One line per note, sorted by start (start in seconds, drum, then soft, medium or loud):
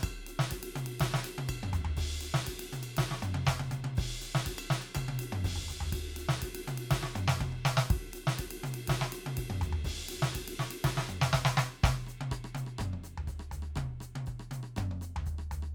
0.01 kick medium
0.01 hi-hat pedal medium
0.01 ride bell loud
0.27 hi-hat pedal medium
0.27 ride medium
0.40 snare loud
0.51 kick medium
0.51 hi-hat pedal medium
0.51 ride loud
0.63 ride loud
0.76 hi-hat pedal medium
0.76 high tom loud
0.87 ride loud
1.00 kick medium
1.00 snare loud
1.00 hi-hat pedal medium
1.00 ride loud
1.14 snare loud
1.25 hi-hat pedal medium
1.25 ride loud
1.39 high tom loud
1.48 kick medium
1.48 hi-hat pedal medium
1.48 ride bell loud
1.64 mid tom loud
1.74 floor tom loud
1.74 hi-hat pedal medium
1.85 floor tom loud
1.97 kick medium
1.97 hi-hat pedal medium
1.97 ride loud
2.21 hi-hat pedal medium
2.21 ride loud
2.35 snare loud
2.47 kick medium
2.47 hi-hat pedal medium
2.47 ride loud
2.60 ride loud
2.73 hi-hat pedal loud
2.73 high tom loud
2.83 ride bell loud
2.97 kick medium
2.97 snare loud
2.97 hi-hat pedal medium
2.97 ride loud
3.11 snare medium
3.23 kick soft
3.23 hi-hat pedal medium
3.23 mid tom loud
3.35 high tom loud
3.46 kick medium
3.46 snare loud
3.46 hi-hat pedal medium
3.60 high tom loud
3.72 kick soft
3.72 hi-hat pedal loud
3.72 high tom loud
3.85 cross-stick soft
3.85 high tom loud
3.95 kick loud
3.95 hi-hat pedal soft
3.95 ride loud
4.22 hi-hat pedal medium
4.22 ride bell medium
4.35 snare loud
4.47 kick medium
4.47 hi-hat pedal medium
4.47 ride loud
4.59 ride bell loud
4.71 snare loud
4.71 hi-hat pedal medium
4.82 ride bell medium
4.95 kick medium
4.95 hi-hat pedal medium
4.95 high tom loud
4.95 ride bell loud
5.09 high tom loud
5.20 hi-hat pedal medium
5.20 ride loud
5.33 mid tom loud
5.45 kick medium
5.45 hi-hat pedal medium
5.45 ride loud
5.56 floor tom medium
5.69 floor tom medium
5.69 hi-hat pedal loud
5.81 floor tom loud
5.93 kick medium
5.93 hi-hat pedal medium
5.93 ride loud
6.17 hi-hat pedal medium
6.17 ride loud
6.29 snare loud
6.42 kick medium
6.42 hi-hat pedal medium
6.42 ride loud
6.55 ride loud
6.68 hi-hat pedal loud
6.68 high tom loud
6.78 ride loud
6.91 kick medium
6.91 snare loud
6.91 hi-hat pedal medium
6.91 ride loud
7.03 snare medium
7.16 hi-hat pedal medium
7.16 mid tom loud
7.28 snare loud
7.40 kick medium
7.40 hi-hat pedal medium
7.40 high tom loud
7.53 high tom medium
7.62 kick soft
7.62 snare loud
7.62 hi-hat pedal loud
7.78 snare loud
7.89 kick loud
7.89 hi-hat pedal medium
7.89 ride loud
8.14 hi-hat pedal medium
8.14 ride loud
8.28 snare loud
8.39 kick medium
8.39 hi-hat pedal medium
8.39 ride loud
8.51 ride loud
8.64 hi-hat pedal medium
8.64 high tom loud
8.74 ride loud
8.88 kick soft
8.88 kick medium
8.88 snare loud
8.88 hi-hat pedal medium
8.88 ride loud
9.02 snare medium
9.13 hi-hat pedal medium
9.13 ride loud
9.27 high tom loud
9.37 kick medium
9.37 hi-hat pedal medium
9.37 ride loud
9.50 mid tom loud
9.62 floor tom loud
9.62 hi-hat pedal medium
9.73 floor tom loud
9.85 kick medium
9.85 hi-hat pedal medium
9.85 ride loud
10.09 hi-hat pedal medium
10.09 ride loud
10.23 snare loud
10.35 kick medium
10.35 hi-hat pedal medium
10.35 ride loud
10.48 ride loud
10.60 snare loud
10.60 hi-hat pedal medium
10.71 ride loud
10.85 kick medium
10.85 snare loud
10.85 hi-hat pedal medium
10.85 ride loud
10.98 snare loud
11.08 kick soft
11.08 hi-hat pedal medium
11.08 mid tom loud
11.22 snare loud
11.33 kick medium
11.33 snare loud
11.33 hi-hat pedal medium
11.45 snare loud
11.55 kick soft
11.55 snare loud
11.55 hi-hat pedal medium
11.84 kick loud
11.84 snare loud
11.84 hi-hat pedal medium
11.84 high tom loud
12.07 cross-stick soft
12.07 hi-hat pedal medium
12.21 high tom loud
12.32 kick medium
12.32 cross-stick medium
12.32 hi-hat pedal medium
12.45 cross-stick medium
12.55 hi-hat pedal loud
12.55 high tom loud
12.67 cross-stick medium
12.79 kick medium
12.79 cross-stick medium
12.79 hi-hat pedal medium
12.79 mid tom loud
12.94 mid tom medium
13.04 cross-stick soft
13.04 hi-hat pedal medium
13.18 floor tom loud
13.28 kick medium
13.28 cross-stick soft
13.28 hi-hat pedal medium
13.40 cross-stick medium
13.52 floor tom loud
13.52 hi-hat pedal medium
13.63 cross-stick soft
13.76 kick medium
13.76 cross-stick medium
13.76 hi-hat pedal medium
13.76 high tom loud
14.01 cross-stick medium
14.01 hi-hat pedal medium
14.16 high tom loud
14.26 kick medium
14.26 cross-stick soft
14.26 hi-hat pedal medium
14.40 cross-stick medium
14.52 hi-hat pedal medium
14.52 high tom loud
14.63 cross-stick medium
14.77 kick medium
14.77 cross-stick medium
14.77 hi-hat pedal medium
14.77 mid tom loud
14.91 mid tom medium
15.02 cross-stick soft
15.02 hi-hat pedal medium
15.17 floor tom loud
15.26 kick medium
15.26 cross-stick soft
15.26 hi-hat pedal medium
15.39 cross-stick medium
15.52 floor tom loud
15.52 hi-hat pedal loud
15.63 cross-stick soft